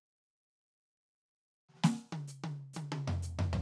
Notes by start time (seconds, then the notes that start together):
1.69 snare
1.73 snare
1.77 snare
1.83 snare, hi-hat pedal
2.12 high tom
2.27 hi-hat pedal
2.43 open hi-hat, high tom
2.73 hi-hat pedal, high tom
2.92 high tom
3.07 floor tom
3.22 hi-hat pedal
3.39 floor tom
3.53 floor tom